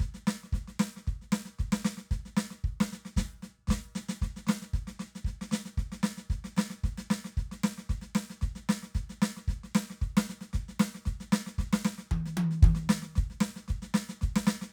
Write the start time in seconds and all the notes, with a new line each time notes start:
0.01 kick, snare
0.15 snare
0.28 snare
0.44 snare
0.53 kick, snare
0.69 snare
0.80 snare
0.97 snare
1.08 kick, snare
1.22 snare
1.33 snare
1.46 snare
1.60 kick, snare
1.73 snare
1.86 snare
1.98 snare
2.12 kick, snare
2.26 snare
2.38 snare
2.51 snare
2.65 kick, snare
2.81 snare
2.93 snare
3.06 snare
3.17 kick, snare
3.43 snare
3.68 kick, snare
3.71 snare
3.96 snare
4.10 snare
4.23 kick, snare
4.37 snare
4.48 snare
4.50 snare
4.63 snare
4.74 kick, snare
4.88 snare
5.00 snare
5.16 snare
5.25 kick, snare
5.42 snare
5.54 snare
5.66 snare
5.78 kick, snare
5.93 snare
6.04 snare
6.18 snare
6.31 kick, snare
6.45 snare
6.58 snare
6.71 snare
6.85 kick, snare
6.99 snare
7.11 snare
7.25 snare
7.38 kick, snare
7.52 snare
7.65 snare
7.79 snare
7.90 kick, snare
8.03 snare
8.16 snare
8.31 snare
8.42 kick, snare
8.56 snare
8.70 snare
8.84 snare
8.96 kick, snare
9.10 snare
9.23 snare
9.38 snare
9.49 kick, snare
9.64 snare
9.76 snare
9.91 snare
10.02 kick, snare
10.18 snare
10.30 snare
10.42 snare
10.54 kick, snare
10.69 snare
10.80 snare
10.95 snare
11.06 kick, snare
11.21 snare
11.33 snare
11.47 snare
11.59 kick, snare
11.74 snare
11.86 snare
11.99 snare
12.12 kick, high tom
12.27 snare
12.38 high tom
12.52 snare
12.63 kick, high tom
12.76 snare
12.90 snare
13.03 snare
13.16 kick, snare
13.31 snare
13.42 snare
13.57 snare
13.69 kick, snare
13.83 snare
13.95 snare
14.10 snare
14.22 kick, snare
14.37 snare
14.48 snare
14.62 snare